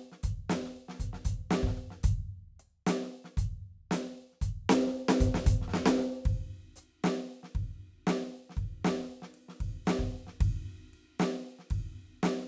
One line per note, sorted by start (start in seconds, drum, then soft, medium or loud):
0.12 snare soft
0.24 closed hi-hat medium
0.24 kick medium
0.50 closed hi-hat medium
0.50 snare loud
0.65 snare soft
0.77 closed hi-hat soft
0.89 snare medium
0.93 snare soft
1.00 closed hi-hat medium
1.00 kick medium
1.14 snare soft
1.25 closed hi-hat loud
1.25 kick medium
1.51 closed hi-hat medium
1.51 snare loud
1.63 kick medium
1.68 snare soft
1.77 snare soft
1.77 closed hi-hat soft
1.91 snare soft
2.04 closed hi-hat loud
2.04 kick loud
2.60 closed hi-hat soft
2.87 closed hi-hat loud
2.87 snare loud
3.03 snare soft
3.13 closed hi-hat soft
3.25 snare soft
3.38 closed hi-hat medium
3.38 kick medium
3.92 closed hi-hat loud
3.92 snare loud
4.33 snare soft
4.42 closed hi-hat medium
4.42 kick medium
4.70 closed hi-hat loud
4.70 snare loud
4.87 snare soft
4.97 closed hi-hat soft
5.09 snare loud
5.21 closed hi-hat loud
5.21 kick loud
5.35 snare loud
5.47 closed hi-hat loud
5.47 kick loud
5.62 snare soft
5.68 snare soft
5.71 snare soft
5.71 hi-hat pedal soft
5.74 snare loud
5.86 snare loud
5.99 snare soft
6.26 kick medium
6.26 ride medium
6.76 hi-hat pedal medium
6.76 ride soft
7.04 snare loud
7.04 ride soft
7.29 ride soft
7.44 snare soft
7.55 kick medium
7.55 ride soft
8.07 snare loud
8.07 ride soft
8.24 snare soft
8.50 snare soft
8.57 kick medium
8.57 ride soft
8.85 snare loud
8.85 ride soft
9.02 snare soft
9.11 ride soft
9.23 snare soft
9.35 ride soft
9.49 snare soft
9.61 kick medium
9.61 ride medium
9.86 snare loud
9.86 hi-hat pedal soft
9.86 ride medium
10.00 kick medium
10.12 ride soft
10.27 snare soft
10.41 kick loud
10.41 ride medium
10.68 ride soft
10.94 ride soft
11.20 snare loud
11.20 ride soft
11.47 ride soft
11.59 snare soft
11.71 kick medium
11.71 ride medium
11.97 ride soft
12.24 snare loud
12.24 ride medium
12.39 snare soft